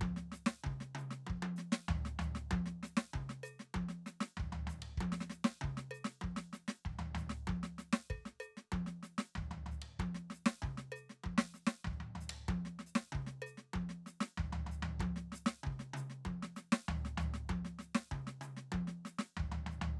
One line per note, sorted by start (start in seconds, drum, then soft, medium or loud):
0.01 kick soft
0.01 high tom loud
0.08 kick soft
0.16 snare soft
0.32 snare soft
0.32 hi-hat pedal medium
0.46 snare medium
0.64 kick soft
0.64 mid tom medium
0.72 kick soft
0.80 snare soft
0.95 hi-hat pedal soft
0.95 mid tom medium
1.11 snare soft
1.27 kick soft
1.27 high tom medium
1.42 high tom medium
1.56 snare soft
1.56 hi-hat pedal soft
1.72 snare medium
1.88 kick soft
1.88 floor tom medium
1.96 kick soft
1.99 kick soft
2.05 snare soft
2.19 floor tom medium
2.19 hi-hat pedal soft
2.35 snare soft
2.51 kick soft
2.51 high tom loud
2.58 kick soft
2.62 kick soft
2.62 snare soft
2.83 snare soft
2.83 hi-hat pedal medium
2.97 snare medium
3.14 kick soft
3.14 mid tom medium
3.21 kick soft
3.29 snare soft
3.43 hi-hat pedal medium
3.43 percussion medium
3.60 snare soft
3.74 kick soft
3.74 high tom medium
3.81 kick soft
3.89 snare soft
4.06 snare soft
4.06 hi-hat pedal soft
4.21 snare medium
4.37 kick soft
4.37 floor tom medium
4.46 kick soft
4.52 floor tom medium
4.67 floor tom medium
4.67 hi-hat pedal medium
4.82 floor tom medium
4.98 kick soft
4.98 high tom loud
5.04 kick soft
5.12 snare soft
5.21 snare soft
5.30 snare soft
5.30 hi-hat pedal soft
5.44 snare medium
5.61 kick soft
5.61 mid tom medium
5.77 snare soft
5.91 hi-hat pedal soft
5.91 percussion medium
6.05 snare medium
6.21 kick soft
6.21 high tom medium
6.36 snare medium
6.53 snare soft
6.53 hi-hat pedal medium
6.68 snare medium
6.85 kick soft
6.85 floor tom soft
6.99 floor tom medium
7.15 floor tom medium
7.15 hi-hat pedal soft
7.30 snare soft
7.47 kick soft
7.47 high tom medium
7.63 snare soft
7.78 snare soft
7.78 hi-hat pedal medium
7.93 snare medium
8.10 kick soft
8.10 percussion medium
8.25 snare soft
8.40 hi-hat pedal soft
8.40 percussion medium
8.57 snare soft
8.72 kick soft
8.72 high tom loud
8.86 snare soft
9.03 snare soft
9.03 hi-hat pedal soft
9.18 snare medium
9.35 kick soft
9.35 floor tom medium
9.51 floor tom medium
9.66 floor tom medium
9.71 hi-hat pedal soft
9.82 floor tom medium
9.99 kick soft
9.99 high tom medium
10.15 snare soft
10.30 snare soft
10.34 hi-hat pedal soft
10.46 snare medium
10.62 kick soft
10.62 mid tom medium
10.73 kick soft
10.77 snare soft
10.92 hi-hat pedal soft
10.92 percussion medium
11.10 snare soft
11.24 kick soft
11.24 high tom medium
11.38 snare medium
11.54 snare soft
11.54 hi-hat pedal soft
11.67 snare medium
11.85 kick soft
11.85 floor tom medium
11.93 kick soft
12.00 floor tom soft
12.15 floor tom medium
12.21 hi-hat pedal medium
12.29 floor tom loud
12.48 kick soft
12.48 high tom loud
12.65 snare soft
12.79 snare soft
12.86 hi-hat pedal medium
12.95 snare medium
13.12 kick soft
13.12 mid tom medium
13.27 snare soft
13.42 percussion medium
13.46 hi-hat pedal soft
13.58 snare soft
13.74 kick soft
13.74 high tom medium
13.81 kick soft
13.89 snare soft
14.06 snare soft
14.06 hi-hat pedal medium
14.21 snare medium
14.38 kick soft
14.38 floor tom medium
14.45 kick soft
14.53 floor tom medium
14.67 floor tom medium
14.71 hi-hat pedal soft
14.83 floor tom medium
15.00 kick soft
15.00 high tom loud
15.06 kick soft
15.16 snare soft
15.32 snare soft
15.32 hi-hat pedal medium
15.46 snare medium
15.63 kick soft
15.63 mid tom medium
15.72 kick soft
15.79 snare soft
15.94 hi-hat pedal medium
15.94 mid tom medium
16.10 snare soft
16.25 kick soft
16.25 high tom medium
16.43 snare soft
16.56 snare soft
16.56 hi-hat pedal medium
16.72 snare medium
16.88 kick soft
16.88 floor tom medium
17.05 snare soft
17.18 floor tom medium
17.18 hi-hat pedal soft
17.34 snare soft
17.49 kick soft
17.49 high tom medium
17.55 kick soft
17.65 snare soft
17.79 snare soft
17.79 hi-hat pedal soft
17.95 snare medium
18.11 kick soft
18.11 mid tom medium
18.27 snare soft
18.41 hi-hat pedal medium
18.41 mid tom medium
18.57 snare soft
18.72 kick soft
18.72 high tom loud
18.87 snare soft
19.05 snare soft
19.05 hi-hat pedal medium
19.19 snare medium
19.37 kick soft
19.37 floor tom medium
19.45 kick soft
19.52 floor tom medium
19.66 floor tom medium
19.71 hi-hat pedal soft
19.82 floor tom medium